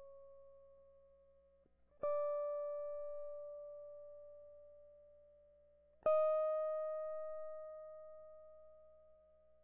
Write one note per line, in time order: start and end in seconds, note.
2.03 4.07 D5
6.06 9.19 D#5